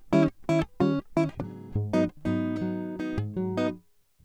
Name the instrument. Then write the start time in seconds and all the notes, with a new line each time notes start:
acoustic guitar
0.14 D#3 G3 C#4 E4
0.50 D#3 G3 C#4 E4
0.81 D#3 G3 C#4 F4
1.18 D#3 G3 C#4 E4
1.35 G#2
1.41 F#3 B3 D4
1.77 G#2
1.94 F#3 B3 D#4
2.26 G#2 F#3 B3 D#4
2.57 B3
2.63 F#3
3.01 B3 D#4
3.19 G#2
3.38 F#3
3.58 B3 D#4